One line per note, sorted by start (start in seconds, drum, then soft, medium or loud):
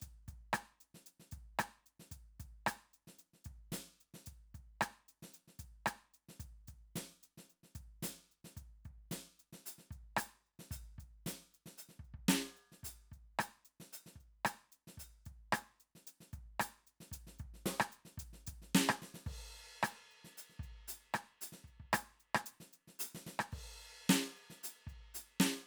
0.01 kick soft
0.01 closed hi-hat medium
0.28 kick soft
0.28 closed hi-hat soft
0.53 cross-stick medium
0.53 closed hi-hat medium
0.80 closed hi-hat soft
0.94 snare soft
1.06 closed hi-hat medium
1.20 snare soft
1.31 kick soft
1.31 closed hi-hat medium
1.59 cross-stick medium
1.59 closed hi-hat medium
1.86 closed hi-hat soft
2.00 snare soft
2.11 kick soft
2.11 closed hi-hat medium
2.40 kick soft
2.40 closed hi-hat medium
2.66 closed hi-hat medium
2.66 cross-stick medium
2.93 closed hi-hat soft
3.07 snare soft
3.19 closed hi-hat soft
3.33 snare soft
3.44 kick soft
3.44 closed hi-hat soft
3.72 closed hi-hat medium
3.72 snare medium
4.00 closed hi-hat soft
4.14 snare soft
4.26 kick soft
4.26 closed hi-hat medium
4.54 kick soft
4.54 closed hi-hat soft
4.81 cross-stick medium
4.81 closed hi-hat medium
5.08 closed hi-hat soft
5.22 snare soft
5.34 closed hi-hat medium
5.48 snare soft
5.59 kick soft
5.59 closed hi-hat medium
5.86 cross-stick medium
5.86 closed hi-hat medium
6.14 closed hi-hat soft
6.29 snare soft
6.40 kick soft
6.40 closed hi-hat medium
6.67 kick soft
6.67 closed hi-hat soft
6.96 snare medium
6.96 closed hi-hat medium
7.23 closed hi-hat soft
7.37 snare soft
7.49 closed hi-hat soft
7.63 snare soft
7.75 kick soft
7.75 closed hi-hat medium
8.03 closed hi-hat loud
8.03 snare medium
8.31 closed hi-hat soft
8.44 snare soft
8.57 kick soft
8.57 closed hi-hat soft
8.85 kick soft
8.85 closed hi-hat soft
9.11 snare medium
9.11 closed hi-hat medium
9.39 closed hi-hat soft
9.53 snare soft
9.66 closed hi-hat medium
9.78 snare soft
9.91 kick soft
9.91 closed hi-hat soft
10.17 closed hi-hat loud
10.17 cross-stick medium
10.46 closed hi-hat soft
10.59 snare soft
10.71 closed hi-hat medium
10.71 kick soft
10.98 kick soft
10.98 closed hi-hat soft
11.26 closed hi-hat medium
11.26 snare medium
11.54 closed hi-hat soft
11.66 snare soft
11.78 closed hi-hat medium
11.89 snare soft
11.99 kick soft
12.04 closed hi-hat soft
12.14 kick soft
12.28 closed hi-hat medium
12.28 snare medium
12.57 closed hi-hat soft
12.72 snare soft
12.83 closed hi-hat medium
12.83 kick soft
13.12 kick soft
13.12 closed hi-hat soft
13.39 closed hi-hat medium
13.39 cross-stick medium
13.65 closed hi-hat soft
13.80 snare soft
13.93 closed hi-hat medium
14.06 snare soft
14.16 kick soft
14.20 closed hi-hat soft
14.45 closed hi-hat medium
14.45 cross-stick medium
14.72 closed hi-hat soft
14.87 snare soft
14.97 closed hi-hat medium
14.97 kick soft
15.25 kick soft
15.25 closed hi-hat soft
15.52 closed hi-hat medium
15.52 cross-stick medium
15.80 closed hi-hat soft
15.95 snare soft
16.07 closed hi-hat medium
16.20 snare soft
16.33 kick soft
16.33 closed hi-hat soft
16.60 closed hi-hat loud
16.60 cross-stick medium
16.87 closed hi-hat soft
17.00 snare soft
17.11 kick soft
17.11 closed hi-hat medium
17.27 snare soft
17.39 kick soft
17.39 closed hi-hat soft
17.54 snare soft
17.66 snare medium
17.80 cross-stick medium
17.92 closed hi-hat soft
18.05 snare soft
18.18 kick soft
18.18 closed hi-hat medium
18.33 snare soft
18.47 kick soft
18.47 closed hi-hat medium
18.62 snare soft
18.75 snare loud
18.89 cross-stick medium
19.02 snare soft
19.14 snare soft
19.26 kick soft
19.26 crash medium
19.83 closed hi-hat medium
19.83 cross-stick medium
20.11 closed hi-hat soft
20.24 snare soft
20.37 closed hi-hat medium
20.50 snare soft
20.59 kick soft
20.59 closed hi-hat soft
20.88 closed hi-hat loud
21.14 cross-stick medium
21.14 closed hi-hat soft
21.41 closed hi-hat loud
21.52 snare soft
21.64 kick soft
21.64 closed hi-hat soft
21.80 kick soft
21.93 closed hi-hat loud
21.93 cross-stick medium
22.20 closed hi-hat soft
22.35 cross-stick medium
22.46 closed hi-hat medium
22.60 snare soft
22.73 closed hi-hat soft
22.87 snare soft
22.99 closed hi-hat loud
23.15 snare soft
23.26 snare soft
23.39 cross-stick medium
23.52 kick soft
23.52 crash medium
23.80 closed hi-hat soft
24.09 closed hi-hat medium
24.09 snare loud
24.36 closed hi-hat soft
24.50 snare soft
24.63 closed hi-hat loud
24.87 kick soft
24.87 closed hi-hat soft
25.14 closed hi-hat loud
25.40 snare medium
25.40 closed hi-hat soft